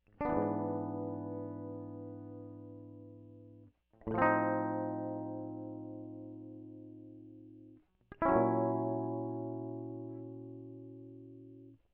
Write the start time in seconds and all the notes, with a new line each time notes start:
0.22 D4
0.26 B3
0.30 E3
0.39 G#2
4.09 A2
4.15 F3 C4
4.22 D#4
8.22 C#4 E4
8.30 F#3
8.38 A#2